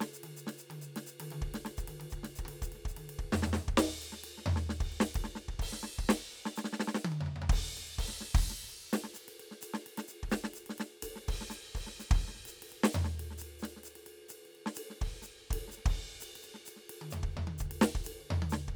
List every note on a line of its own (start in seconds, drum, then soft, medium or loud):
0.01 snare medium
0.01 ride medium
0.14 hi-hat pedal medium
0.24 high tom medium
0.24 ride medium
0.37 hi-hat pedal medium
0.47 snare medium
0.47 ride medium
0.58 hi-hat pedal medium
0.70 high tom medium
0.70 ride medium
0.82 hi-hat pedal medium
0.96 snare medium
0.96 ride medium
1.07 hi-hat pedal medium
1.20 high tom medium
1.20 ride medium
1.31 high tom medium
1.31 ride medium
1.42 kick medium
1.54 snare medium
1.54 ride medium
1.65 snare medium
1.65 ride medium
1.77 kick medium
1.77 hi-hat pedal medium
1.88 high tom medium
1.88 ride medium
2.00 high tom medium
2.00 ride medium
2.10 kick soft
2.10 hi-hat pedal medium
2.23 snare soft
2.23 ride medium
2.36 kick medium
2.36 hi-hat pedal medium
2.45 high tom soft
2.45 ride medium
2.62 kick medium
2.62 hi-hat pedal medium
2.72 snare soft
2.72 ride medium
2.85 kick medium
2.85 hi-hat pedal medium
2.97 high tom medium
2.97 ride medium
3.09 ride medium
3.19 kick medium
3.33 snare loud
3.33 floor tom loud
3.46 floor tom medium
3.53 snare medium
3.53 floor tom medium
3.68 kick medium
3.77 snare loud
3.77 ride medium
4.01 hi-hat pedal medium
4.01 ride soft
4.12 snare soft
4.24 ride medium
4.38 snare soft
4.46 floor tom loud
4.56 snare medium
4.69 snare medium
4.80 kick medium
4.80 ride medium
4.92 ride soft
5.00 snare loud
5.15 kick medium
5.15 ride medium
5.24 snare soft
5.36 snare soft
5.48 kick medium
5.59 kick medium
5.59 crash medium
5.73 snare soft
5.83 snare soft
5.99 kick medium
6.09 snare loud
6.09 ride medium
6.35 ride soft
6.46 snare medium
6.56 snare medium
6.56 hi-hat pedal medium
6.65 snare medium
6.73 snare medium
6.80 snare medium
6.88 snare medium
6.95 snare medium
7.05 high tom loud
7.12 high tom medium
7.21 floor tom medium
7.26 floor tom medium
7.36 floor tom medium
7.42 floor tom medium
7.50 kick loud
7.50 ride loud
7.77 ride bell soft
7.99 kick medium
7.99 crash medium
8.08 snare soft
8.21 snare soft
8.35 kick loud
8.35 crash medium
8.50 snare soft
8.63 snare soft
8.68 hi-hat pedal soft
8.68 ride soft
8.88 hi-hat pedal soft
8.93 snare loud
8.93 ride medium
9.04 snare soft
9.14 snare soft
9.14 hi-hat pedal medium
9.14 ride medium
9.27 snare soft
9.27 ride medium
9.40 ride medium
9.51 snare soft
9.61 hi-hat pedal medium
9.61 ride medium
9.74 snare medium
9.86 ride medium
9.98 snare medium
9.98 ride medium
10.08 hi-hat pedal medium
10.08 ride soft
10.23 kick medium
10.30 snare medium
10.30 hi-hat pedal soft
10.30 ride medium
10.44 snare medium
10.54 hi-hat pedal medium
10.54 ride medium
10.67 snare medium
10.67 ride medium
10.77 snare medium
10.77 hi-hat pedal soft
10.77 ride medium
11.02 kick soft
11.02 hi-hat pedal medium
11.02 ride loud
11.16 snare soft
11.28 kick medium
11.28 crash medium
11.41 snare soft
11.50 snare soft
11.50 hi-hat pedal medium
11.75 kick medium
11.75 crash medium
11.87 snare soft
12.00 snare soft
12.00 hi-hat pedal medium
12.09 kick loud
12.09 snare soft
12.09 crash medium
12.28 snare soft
12.35 snare soft
12.46 hi-hat pedal medium
12.46 ride medium
12.62 ride medium
12.69 hi-hat pedal soft
12.69 ride medium
12.84 snare loud
12.92 floor tom loud
12.92 hi-hat pedal medium
13.05 snare soft
13.20 ride medium
13.31 snare soft
13.38 hi-hat pedal medium
13.42 ride medium
13.59 snare medium
13.59 hi-hat pedal soft
13.65 ride medium
13.77 snare soft
13.84 hi-hat pedal medium
13.84 ride medium
13.96 ride medium
14.05 hi-hat pedal soft
14.05 ride medium
14.29 hi-hat pedal medium
14.29 ride medium
14.46 ride soft
14.50 hi-hat pedal soft
14.55 ride soft
14.66 snare medium
14.75 hi-hat pedal medium
14.75 ride loud
14.90 snare soft
15.01 kick medium
15.01 crash medium
15.22 snare soft
15.22 hi-hat pedal medium
15.51 kick medium
15.51 ride loud
15.68 snare soft
15.68 hi-hat pedal medium
15.78 snare soft
15.86 kick loud
15.86 ride medium
16.21 hi-hat pedal medium
16.21 ride medium
16.36 ride medium
16.42 hi-hat pedal soft
16.42 ride soft
16.54 snare soft
16.66 hi-hat pedal medium
16.66 ride medium
16.76 snare soft
16.90 ride medium
17.02 high tom medium
17.11 floor tom medium
17.11 hi-hat pedal medium
17.23 kick medium
17.32 hi-hat pedal soft
17.37 floor tom medium
17.47 high tom medium
17.58 kick medium
17.58 hi-hat pedal medium
17.71 ride medium
17.82 snare loud
17.95 kick medium
18.04 hi-hat pedal medium
18.04 ride medium
18.20 high tom soft
18.31 floor tom loud
18.42 high tom medium
18.50 snare medium
18.50 hi-hat pedal medium
18.68 kick medium